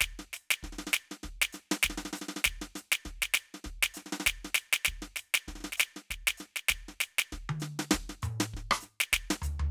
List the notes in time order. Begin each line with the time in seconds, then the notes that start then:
0.01 kick, snare
0.19 snare
0.33 snare, hi-hat pedal
0.51 snare
0.63 kick, snare
0.73 snare
0.79 snare
0.87 snare
0.93 snare, hi-hat pedal
1.11 snare
1.23 kick, snare
1.42 snare
1.53 snare, hi-hat pedal
1.71 snare
1.83 kick, snare
1.90 snare
1.98 snare
2.05 snare
2.13 snare, hi-hat pedal
2.22 snare
2.29 snare
2.36 snare
2.44 kick, snare
2.62 snare
2.76 snare, hi-hat pedal
2.92 snare
3.05 kick, snare
3.22 snare
3.34 snare, hi-hat pedal
3.54 snare
3.66 kick
3.83 snare
3.94 snare, hi-hat pedal
4.06 snare
4.13 snare
4.20 snare
4.27 kick, snare
4.45 snare
4.55 snare, hi-hat pedal
4.73 snare
4.85 kick, snare
5.02 snare
5.16 snare, hi-hat pedal
5.34 snare
5.48 kick, snare
5.56 snare
5.61 snare
5.64 snare
5.72 snare
5.77 snare, hi-hat pedal
5.96 snare
6.11 kick, snare
6.27 snare
6.38 snare, hi-hat pedal
6.56 snare
6.69 kick, snare
6.89 snare
7.01 snare, hi-hat pedal
7.19 snare
7.32 kick, snare
7.49 high tom
7.60 snare, hi-hat pedal
7.79 snare
7.91 kick, snare
8.09 snare
8.22 hi-hat pedal, mid tom
8.40 snare
8.54 kick, snare
8.71 cross-stick
8.81 snare, hi-hat pedal
9.01 snare
9.13 kick, snare
9.31 snare
9.42 floor tom, hi-hat pedal
9.60 floor tom